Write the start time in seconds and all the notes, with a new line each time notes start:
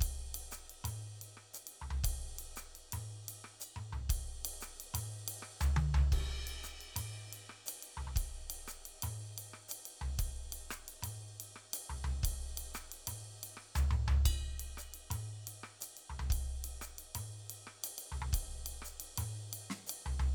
0.01 kick, ride
0.35 ride
0.52 cross-stick, hi-hat pedal
0.70 ride
0.84 mid tom, ride
1.22 ride
1.37 cross-stick
1.54 hi-hat pedal, ride
1.67 ride
1.82 floor tom
1.91 floor tom
2.04 kick, ride
2.39 ride
2.56 cross-stick, hi-hat pedal
2.76 ride
2.93 mid tom, ride
3.29 ride
3.44 cross-stick
3.60 hi-hat pedal, ride bell
3.76 mid tom
3.93 floor tom
4.10 kick, ride
4.45 ride
4.61 cross-stick, hi-hat pedal
4.80 ride
4.94 mid tom, ride
5.28 ride
5.43 cross-stick
5.61 floor tom, hi-hat pedal
5.77 high tom
5.94 floor tom
6.12 kick, ride
6.47 ride
6.64 cross-stick, hi-hat pedal
6.81 ride
6.96 mid tom, ride
7.33 ride
7.50 cross-stick
7.66 hi-hat pedal, ride
7.83 ride
7.97 floor tom
8.07 floor tom
8.16 kick, ride
8.50 ride
8.68 cross-stick, hi-hat pedal
8.86 ride
9.03 mid tom, ride
9.38 ride
9.54 cross-stick
9.69 hi-hat pedal, ride
9.86 ride
10.01 floor tom
10.19 kick, ride
10.53 ride
10.71 cross-stick, hi-hat pedal
10.88 ride
11.03 mid tom, ride
11.40 ride
11.56 cross-stick
11.74 hi-hat pedal, ride
11.90 floor tom
12.05 floor tom
12.24 kick, ride
12.58 ride
12.74 cross-stick, hi-hat pedal
12.92 ride
13.08 mid tom, ride
13.43 ride
13.57 cross-stick
13.75 floor tom, hi-hat pedal
13.91 mid tom
14.08 floor tom
14.26 kick, ride bell
14.60 ride
14.78 cross-stick, hi-hat pedal
14.94 ride
15.11 mid tom, ride
15.47 ride
15.64 cross-stick
15.81 hi-hat pedal, ride
15.97 ride
16.10 floor tom
16.20 floor tom
16.30 kick, ride
16.64 ride
16.82 cross-stick, hi-hat pedal
16.99 ride
17.15 mid tom, ride
17.50 ride
17.67 cross-stick
17.84 hi-hat pedal, ride
17.98 ride
18.12 floor tom
18.33 kick, ride
18.66 ride
18.82 cross-stick, hi-hat pedal
19.00 ride
19.18 mid tom, ride
19.53 ride
19.70 snare
19.87 hi-hat pedal, ride
20.06 floor tom
20.20 floor tom